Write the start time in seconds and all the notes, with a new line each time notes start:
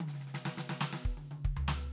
0.00 high tom
0.08 snare
0.13 snare
0.21 snare
0.27 snare
0.34 snare
0.45 snare
0.58 snare
0.69 snare
0.81 snare
0.93 snare
1.05 kick
1.17 closed hi-hat, high tom
1.31 high tom
1.45 kick
1.57 floor tom
1.68 snare